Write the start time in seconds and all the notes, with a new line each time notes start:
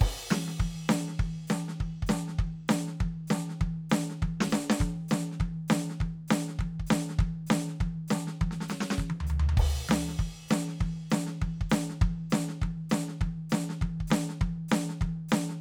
0.01 kick, crash
0.29 snare, hi-hat pedal, high tom
0.48 snare
0.60 kick, high tom
0.88 snare, hi-hat pedal, high tom
1.08 snare
1.19 kick, high tom
1.47 snare, hi-hat pedal, high tom
1.69 snare
1.80 kick, high tom
2.02 kick
2.07 snare, hi-hat pedal, high tom
2.28 snare
2.39 kick, high tom
2.68 snare, hi-hat pedal, high tom
2.88 snare
3.00 kick, high tom
3.27 snare, hi-hat pedal, high tom
3.50 snare
3.61 kick, high tom
3.90 snare, hi-hat pedal, high tom
4.10 snare
4.22 kick, high tom
4.41 snare
4.48 kick, hi-hat pedal
4.53 snare
4.70 snare
4.80 kick, high tom
5.08 snare, hi-hat pedal, high tom
5.32 snare
5.40 kick, high tom
5.68 snare, hi-hat pedal, high tom
5.90 snare
6.00 kick, high tom
6.28 snare, hi-hat pedal, high tom
6.48 snare
6.59 kick, high tom
6.80 kick
6.87 snare, hi-hat pedal, high tom
7.09 snare
7.19 kick, high tom
7.47 snare, hi-hat pedal, high tom
7.69 snare
7.80 kick, high tom
8.08 snare, hi-hat pedal, high tom
8.27 snare
8.41 kick, high tom
8.51 snare
8.61 snare
8.69 snare, hi-hat pedal
8.81 snare
8.90 snare
8.98 kick, high tom
9.10 high tom
9.20 floor tom
9.27 floor tom, hi-hat pedal
9.40 floor tom
9.49 floor tom
9.57 kick, crash
9.88 snare, hi-hat pedal, high tom
10.09 snare
10.19 kick, high tom
10.48 snare, hi-hat pedal, high tom
10.68 snare
10.81 kick, high tom
11.10 snare, hi-hat pedal, high tom
11.27 snare
11.42 kick, high tom
11.61 kick
11.70 snare, hi-hat pedal, high tom
11.90 snare
12.02 kick, high tom
12.30 snare, hi-hat pedal, high tom
12.49 snare
12.62 kick, high tom
12.90 snare, hi-hat pedal, high tom
13.09 snare
13.21 kick, high tom
13.50 snare, hi-hat pedal, high tom
13.69 snare
13.81 kick, high tom
14.00 kick
14.07 hi-hat pedal, high tom
14.12 snare
14.29 snare
14.41 kick, high tom
14.69 snare, hi-hat pedal, high tom
14.89 snare
15.01 kick, high tom
15.29 snare, hi-hat pedal, high tom
15.49 snare